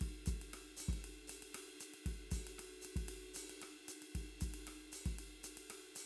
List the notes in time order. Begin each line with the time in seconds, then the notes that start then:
0.01 kick, ride
0.26 kick, hi-hat pedal, ride
0.41 ride
0.53 cross-stick, ride
0.77 hi-hat pedal, ride
0.88 kick
0.93 ride
1.04 ride
1.27 hi-hat pedal, ride
1.42 ride
1.54 cross-stick, ride
1.80 hi-hat pedal, ride
1.94 ride
2.06 kick, ride
2.31 kick, hi-hat pedal, ride
2.47 ride
2.58 cross-stick, ride
2.81 hi-hat pedal, ride
2.96 kick, ride
3.08 ride
3.34 hi-hat pedal, ride
3.50 ride
3.62 cross-stick, ride
3.88 hi-hat pedal, ride
4.02 ride
4.15 kick, ride
4.40 kick, hi-hat pedal, ride
4.54 ride
4.67 cross-stick, ride
4.92 hi-hat pedal, ride
5.06 kick, ride
5.19 ride
5.43 hi-hat pedal, ride
5.57 ride
5.70 cross-stick, ride
5.95 hi-hat pedal, ride